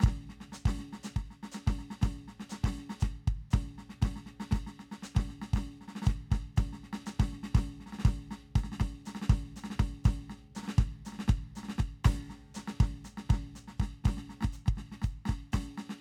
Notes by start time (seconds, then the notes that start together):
0.01 kick, snare, hi-hat pedal
0.06 snare
0.29 snare
0.41 snare
0.52 snare, hi-hat pedal
0.66 kick, snare
0.67 snare
0.79 snare
0.93 snare
1.04 snare, hi-hat pedal
1.16 kick, snare
1.25 hi-hat pedal
1.31 snare
1.43 snare
1.52 snare, hi-hat pedal
1.67 kick, snare
1.75 hi-hat pedal
1.79 snare
1.91 snare
2.02 kick, snare, hi-hat pedal
2.04 snare
2.28 snare
2.40 snare
2.50 snare, hi-hat pedal
2.64 kick, snare
2.66 snare
2.72 hi-hat pedal
2.78 snare
2.90 snare
3.00 kick, snare, hi-hat pedal
3.28 kick, snare
3.51 kick, snare, hi-hat pedal
3.78 snare
3.90 snare
4.02 kick, snare, hi-hat pedal
4.04 snare
4.16 snare
4.26 snare
4.40 snare
4.51 kick, snare, hi-hat pedal
4.54 snare
4.67 snare
4.80 snare
4.92 snare
5.03 snare, hi-hat pedal
5.15 kick, snare
5.18 snare
5.29 snare
5.42 snare
5.54 kick, snare, hi-hat pedal
5.56 snare
5.81 snare
5.88 snare
5.96 snare
6.02 snare, hi-hat pedal
6.07 kick, snare
6.31 kick, snare
6.33 snare
6.57 kick, snare, hi-hat pedal
6.73 snare
6.84 snare
6.93 snare
7.06 snare, hi-hat pedal
7.20 kick, snare
7.33 snare
7.44 snare
7.55 kick, snare, hi-hat pedal
7.57 snare
7.80 snare
7.86 snare
7.93 snare
7.99 snare
8.03 kick, snare, hi-hat pedal
8.07 snare
8.31 snare
8.56 kick, snare, hi-hat pedal
8.64 snare
8.72 snare
8.80 kick, snare
9.06 snare, hi-hat pedal
9.15 snare
9.22 snare
9.30 kick, snare
9.56 snare, hi-hat pedal
9.64 snare
9.71 snare
9.80 kick, snare
10.05 kick, snare, hi-hat pedal
10.30 snare
10.55 snare, hi-hat pedal
10.63 snare
10.68 snare
10.78 kick, snare
11.05 snare, hi-hat pedal
11.13 snare
11.19 snare
11.28 kick, snare
11.56 snare, hi-hat pedal
11.63 snare
11.69 snare
11.79 kick, snare
12.04 kick, snare, hi-hat pedal
12.30 snare
12.55 snare, hi-hat pedal
12.68 snare
12.81 kick, snare
13.05 snare, hi-hat pedal
13.18 snare
13.30 kick, snare
13.32 snare
13.56 snare, hi-hat pedal
13.68 snare
13.78 kick, snare, hi-hat pedal
13.82 snare
14.04 kick, snare, hi-hat pedal
14.07 snare
14.17 snare
14.30 snare
14.41 snare
14.43 kick, snare
14.53 hi-hat pedal
14.66 kick, snare
14.75 snare, hi-hat pedal
14.92 snare
15.04 kick, hi-hat pedal
15.26 snare
15.29 kick, snare
15.52 kick, snare, hi-hat pedal
15.74 snare, hi-hat pedal
15.90 snare